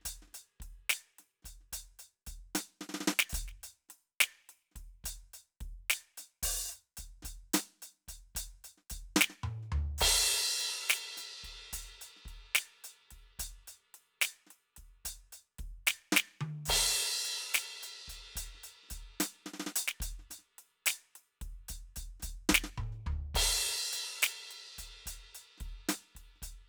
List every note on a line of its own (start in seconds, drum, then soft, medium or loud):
0.01 closed hi-hat medium
0.01 kick soft
0.01 snare soft
0.22 snare soft
0.27 snare soft
0.33 closed hi-hat soft
0.33 snare soft
0.60 kick soft
0.60 closed hi-hat soft
0.89 closed hi-hat medium
0.89 snare medium
1.18 snare soft
1.18 closed hi-hat soft
1.42 closed hi-hat soft
1.42 kick soft
1.42 snare soft
1.60 snare soft
1.72 closed hi-hat medium
1.72 kick soft
1.99 closed hi-hat soft
2.26 closed hi-hat soft
2.26 kick soft
2.55 closed hi-hat medium
2.55 snare medium
2.81 snare soft
2.89 snare soft
2.94 snare medium
3.00 snare soft
3.07 snare loud
3.19 snare loud
3.29 kick soft
3.29 hi-hat pedal medium
3.34 closed hi-hat medium
3.39 kick soft
3.48 snare soft
3.63 closed hi-hat soft
3.89 snare soft
3.89 closed hi-hat soft
4.20 open hi-hat medium
4.20 snare loud
4.20 hi-hat pedal medium
4.49 closed hi-hat soft
4.71 snare soft
4.75 kick soft
4.75 snare soft
4.75 closed hi-hat soft
5.04 closed hi-hat medium
5.04 kick soft
5.04 hi-hat pedal soft
5.33 closed hi-hat soft
5.60 kick soft
5.60 closed hi-hat soft
5.90 closed hi-hat medium
5.90 snare medium
6.17 closed hi-hat soft
6.17 snare soft
6.43 open hi-hat loud
6.43 kick soft
6.68 closed hi-hat soft
6.68 hi-hat pedal medium
6.97 closed hi-hat soft
6.97 kick soft
7.22 closed hi-hat soft
7.22 kick soft
7.22 snare soft
7.53 closed hi-hat loud
7.53 snare loud
7.82 closed hi-hat soft
8.08 closed hi-hat medium
8.08 kick soft
8.35 closed hi-hat medium
8.35 kick soft
8.64 closed hi-hat soft
8.77 snare soft
8.90 closed hi-hat medium
8.90 kick soft
9.16 snare loud
9.21 snare loud
9.30 snare soft
9.43 mid tom medium
9.62 snare soft
9.72 floor tom loud
9.98 kick soft
9.98 hi-hat pedal medium
9.98 crash loud
10.07 kick soft
10.59 closed hi-hat soft
10.89 open hi-hat medium
10.89 snare loud
11.17 closed hi-hat soft
11.17 snare soft
11.43 kick soft
11.43 closed hi-hat soft
11.73 open hi-hat medium
11.73 kick soft
12.01 closed hi-hat soft
12.16 snare soft
12.25 kick soft
12.25 snare soft
12.25 closed hi-hat soft
12.55 closed hi-hat medium
12.55 snare loud
12.84 closed hi-hat soft
13.10 kick soft
13.10 closed hi-hat soft
13.39 closed hi-hat medium
13.39 kick soft
13.67 closed hi-hat soft
13.94 closed hi-hat soft
14.21 closed hi-hat medium
14.21 snare medium
14.21 hi-hat pedal soft
14.46 snare soft
14.46 closed hi-hat soft
14.76 kick soft
14.76 closed hi-hat soft
15.05 closed hi-hat medium
15.05 kick soft
15.32 closed hi-hat soft
15.58 kick soft
15.58 closed hi-hat soft
15.86 closed hi-hat medium
15.86 snare loud
16.12 snare medium
16.16 snare loud
16.40 high tom medium
16.65 kick soft
16.65 hi-hat pedal medium
16.65 crash loud
16.96 closed hi-hat soft
17.24 closed hi-hat soft
17.53 closed hi-hat medium
17.53 snare medium
17.53 hi-hat pedal soft
17.83 closed hi-hat soft
18.08 closed hi-hat soft
18.08 kick soft
18.35 closed hi-hat medium
18.35 kick soft
18.54 snare soft
18.63 closed hi-hat soft
18.83 snare soft
18.89 closed hi-hat soft
18.89 kick soft
18.89 snare soft
19.20 closed hi-hat loud
19.20 snare medium
19.46 snare soft
19.53 snare soft
19.59 snare medium
19.66 snare medium
19.76 closed hi-hat loud
19.87 snare medium
20.00 closed hi-hat medium
20.00 kick soft
20.19 snare soft
20.30 closed hi-hat medium
20.30 snare soft
20.38 snare soft
20.58 closed hi-hat soft
20.86 closed hi-hat loud
20.86 snare medium
21.15 closed hi-hat soft
21.41 kick soft
21.41 closed hi-hat soft
21.68 closed hi-hat medium
21.68 kick soft
21.96 closed hi-hat medium
21.96 kick soft
22.02 kick soft
22.19 closed hi-hat medium
22.19 kick soft
22.19 snare soft
22.28 kick soft
22.49 kick soft
22.49 snare loud
22.54 snare loud
22.64 snare soft
22.77 kick soft
22.77 mid tom medium
22.83 kick soft
22.92 snare soft
23.06 kick soft
23.06 floor tom medium
23.12 kick soft
23.34 kick soft
23.34 crash medium
23.42 kick soft
23.92 closed hi-hat medium
24.22 closed hi-hat loud
24.22 snare loud
24.51 closed hi-hat soft
24.78 closed hi-hat soft
24.78 kick soft
25.06 closed hi-hat medium
25.06 kick soft
25.34 closed hi-hat soft
25.57 kick soft
25.57 snare soft
25.57 closed hi-hat soft
25.66 kick soft
25.89 closed hi-hat medium
25.89 snare medium
26.15 kick soft
26.15 closed hi-hat soft
26.35 snare soft
26.42 closed hi-hat soft
26.42 kick soft